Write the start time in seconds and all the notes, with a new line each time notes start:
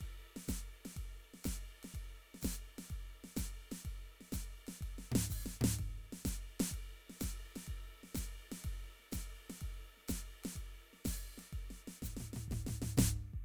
0.01 kick, ride
0.36 snare
0.48 kick, snare, hi-hat pedal, ride
0.85 snare, ride
0.97 kick, ride
1.34 snare
1.44 kick, snare, hi-hat pedal, ride
1.83 snare, ride
1.94 kick, ride
2.35 snare
2.41 kick, snare, hi-hat pedal, ride
2.79 snare, ride
2.89 kick, hi-hat pedal, ride
3.24 snare
3.36 kick, snare, hi-hat pedal, ride
3.72 snare, ride
3.85 kick, ride
4.21 snare
4.32 kick, snare, hi-hat pedal, ride
4.67 snare, ride
4.81 kick, ride
4.99 snare
5.12 snare, floor tom
5.30 kick, hi-hat pedal, ride
5.46 snare
5.61 snare, floor tom
5.77 kick, hi-hat pedal, ride
6.13 snare
6.25 kick, snare, hi-hat pedal, ride
6.60 snare, ride
6.70 kick, hi-hat pedal, ride
7.10 snare
7.20 kick, snare, hi-hat pedal, ride
7.56 snare, ride
7.65 kick, hi-hat pedal, ride
8.04 snare
8.15 kick, snare, hi-hat pedal, ride
8.52 snare, ride
8.64 kick, ride
9.00 snare
9.12 kick, snare, hi-hat pedal, ride
9.50 snare, ride
9.61 kick, ride
9.97 snare
10.08 kick, snare, hi-hat pedal, ride
10.44 snare, ride
10.56 kick, hi-hat pedal, ride
10.93 snare
11.05 kick, snare, hi-hat pedal, ride
11.38 snare, ride
11.51 kick, hi-hat pedal, ride
11.71 snare
11.88 snare
12.02 kick, snare, floor tom, hi-hat pedal
12.17 snare, floor tom
12.33 snare, floor tom
12.48 kick, snare, floor tom, hi-hat pedal
12.67 snare, floor tom
12.82 snare, floor tom
12.97 kick, snare, floor tom, hi-hat pedal
13.34 kick